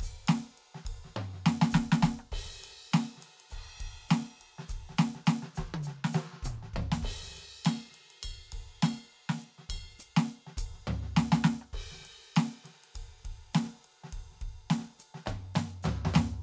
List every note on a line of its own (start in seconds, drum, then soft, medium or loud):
0.01 kick medium
0.01 hi-hat pedal medium
0.01 ride loud
0.08 kick soft
0.12 kick soft
0.29 snare loud
0.29 ride loud
0.36 cross-stick soft
0.59 ride medium
0.76 snare medium
0.87 kick soft
0.87 ride loud
0.93 kick soft
0.96 kick soft
1.06 snare soft
1.18 mid tom loud
1.35 snare soft
1.48 snare loud
1.63 snare loud
1.72 kick soft
1.72 snare loud
1.72 hi-hat pedal loud
1.94 snare loud
2.04 kick soft
2.04 snare loud
2.21 cross-stick medium
2.33 kick medium
2.33 crash loud
2.41 kick soft
2.44 kick soft
2.44 snare soft
2.62 snare soft
2.65 snare soft
2.65 ride loud
2.94 snare loud
2.94 hi-hat pedal medium
2.94 ride loud
3.01 cross-stick soft
3.19 snare soft
3.19 hi-hat pedal soft
3.24 snare soft
3.24 ride medium
3.42 ride medium
3.51 kick soft
3.51 hi-hat pedal soft
3.51 ride medium
3.78 snare soft
3.82 kick soft
3.82 ride medium
3.88 kick soft
3.92 kick soft
4.11 snare loud
4.11 hi-hat pedal medium
4.11 ride medium
4.22 snare soft
4.39 kick soft
4.39 hi-hat pedal soft
4.39 ride medium
4.60 snare medium
4.70 kick medium
4.70 hi-hat pedal medium
4.70 ride medium
4.77 kick soft
4.91 snare soft
4.99 snare loud
4.99 hi-hat pedal medium
5.17 snare soft
5.28 snare loud
5.28 hi-hat pedal medium
5.44 snare medium
5.57 kick soft
5.57 snare medium
5.57 hi-hat pedal medium
5.65 kick soft
5.69 kick soft
5.76 high tom loud
5.84 hi-hat pedal medium
5.89 snare medium
6.06 snare loud
6.14 snare loud
6.14 hi-hat pedal medium
6.34 snare soft
6.44 kick medium
6.44 hi-hat pedal loud
6.44 mid tom loud
6.54 kick soft
6.64 snare soft
6.75 kick soft
6.75 floor tom loud
6.82 kick soft
6.93 snare loud
7.04 kick medium
7.04 crash loud
7.12 kick soft
7.23 snare soft
7.32 snare soft
7.38 snare soft
7.38 ride medium
7.66 snare loud
7.66 hi-hat pedal medium
7.66 ride bell loud
7.92 snare soft
7.92 ride medium
8.01 snare soft
8.06 snare soft
8.12 snare soft
8.12 ride medium
8.23 kick soft
8.23 hi-hat pedal soft
8.23 ride bell loud
8.54 kick soft
8.54 ride loud
8.84 snare loud
8.84 hi-hat pedal medium
8.84 ride bell loud
8.96 snare soft
9.11 hi-hat pedal soft
9.11 ride soft
9.31 snare loud
9.39 hi-hat pedal medium
9.44 ride medium
9.60 snare soft
9.71 kick soft
9.71 snare soft
9.71 ride bell loud
9.77 kick soft
9.81 kick soft
9.81 snare soft
9.92 snare soft
10.01 hi-hat pedal loud
10.01 ride medium
10.18 snare loud
10.26 hi-hat pedal soft
10.31 ride soft
10.48 snare soft
10.59 kick medium
10.59 hi-hat pedal loud
10.59 ride loud
10.75 snare soft
10.89 floor tom loud
11.05 snare soft
11.18 snare loud
11.34 snare loud
11.46 snare loud
11.63 cross-stick soft
11.75 kick soft
11.75 crash medium
11.81 kick soft
11.84 kick soft
11.93 snare soft
12.02 snare soft
12.07 ride medium
12.37 snare loud
12.37 hi-hat pedal soft
12.37 ride loud
12.66 snare soft
12.66 ride medium
12.76 cross-stick soft
12.85 ride medium
12.96 kick soft
12.96 hi-hat pedal medium
12.96 ride loud
13.23 kick soft
13.23 snare soft
13.23 ride medium
13.35 kick soft
13.55 snare loud
13.55 hi-hat pedal medium
13.55 ride loud
13.64 snare soft
13.86 ride medium
14.05 snare soft
14.14 kick soft
14.14 ride medium
14.20 kick soft
14.33 snare soft
14.37 snare soft
14.43 kick soft
14.43 ride medium
14.50 kick soft
14.72 snare loud
14.72 hi-hat pedal medium
14.72 ride loud
14.80 snare soft
15.01 hi-hat pedal medium
15.01 ride medium
15.16 snare medium
15.28 kick soft
15.28 cross-stick medium
15.28 hi-hat pedal medium
15.28 mid tom loud
15.34 kick soft
15.56 snare loud
15.56 hi-hat pedal medium
15.56 mid tom loud
15.84 snare medium
15.84 hi-hat pedal medium
15.84 floor tom loud
16.07 snare loud
16.07 floor tom loud
16.15 snare loud
16.15 hi-hat pedal medium
16.15 floor tom loud